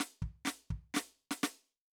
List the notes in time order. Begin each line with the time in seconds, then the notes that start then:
0.00 snare
0.22 kick
0.45 snare
0.47 snare
0.70 kick
0.94 snare
0.96 snare
1.31 snare
1.43 snare